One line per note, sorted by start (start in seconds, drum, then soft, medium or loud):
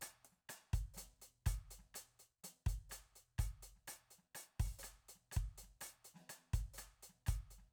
0.01 open hi-hat medium
0.01 cross-stick soft
0.25 closed hi-hat soft
0.32 snare soft
0.49 open hi-hat medium
0.49 cross-stick soft
0.73 closed hi-hat medium
0.73 kick soft
0.94 closed hi-hat medium
0.94 snare soft
0.94 hi-hat pedal soft
1.22 closed hi-hat soft
1.46 open hi-hat medium
1.46 kick soft
1.46 cross-stick soft
1.46 snare soft
1.46 hi-hat pedal soft
1.71 closed hi-hat soft
1.79 snare soft
1.94 closed hi-hat medium
1.94 cross-stick soft
2.19 closed hi-hat soft
2.44 closed hi-hat medium
2.44 snare soft
2.66 closed hi-hat medium
2.66 kick soft
2.89 closed hi-hat medium
2.89 cross-stick soft
2.89 hi-hat pedal soft
3.15 closed hi-hat soft
3.38 open hi-hat medium
3.38 kick soft
3.38 cross-stick soft
3.38 hi-hat pedal soft
3.62 closed hi-hat soft
3.76 snare soft
3.87 open hi-hat medium
3.87 cross-stick soft
4.10 closed hi-hat soft
4.18 snare soft
4.35 open hi-hat medium
4.35 cross-stick soft
4.60 open hi-hat medium
4.60 kick soft
4.65 snare soft
4.79 hi-hat pedal medium
4.83 closed hi-hat medium
4.83 cross-stick soft
5.08 closed hi-hat soft
5.15 snare soft
5.31 closed hi-hat medium
5.31 cross-stick soft
5.36 kick soft
5.58 closed hi-hat soft
5.63 snare soft
5.81 open hi-hat medium
5.81 cross-stick soft
6.04 closed hi-hat soft
6.14 snare soft
6.29 closed hi-hat medium
6.29 cross-stick soft
6.53 closed hi-hat medium
6.53 kick soft
6.58 snare soft
6.73 hi-hat pedal soft
6.78 closed hi-hat medium
6.78 cross-stick soft
7.03 closed hi-hat soft
7.09 snare soft
7.26 open hi-hat medium
7.26 kick soft
7.26 cross-stick soft
7.26 hi-hat pedal soft
7.50 closed hi-hat soft
7.58 snare soft